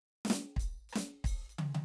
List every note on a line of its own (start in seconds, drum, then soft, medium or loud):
0.25 snare loud
0.30 snare loud
0.56 kick medium
0.56 percussion medium
0.89 cross-stick medium
0.89 hi-hat pedal soft
0.96 snare loud
1.24 kick medium
1.24 percussion medium
1.49 hi-hat pedal soft
1.58 high tom loud
1.74 high tom loud